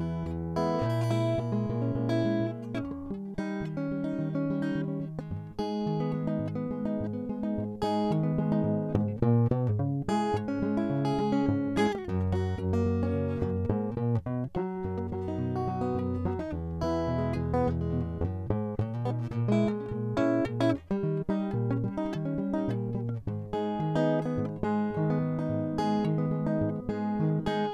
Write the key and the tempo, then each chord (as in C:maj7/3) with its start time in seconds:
G# minor, 107 BPM
0.00 E:maj
0.83 A#:hdim7
3.07 D#:7(*5)
5.31 G#:min
9.80 C#:min/5
12.04 F#:maj
14.29 B:maj/5
16.53 E:maj
18.77 A#:hdim7
21.01 D#:7/5
23.26 G#:min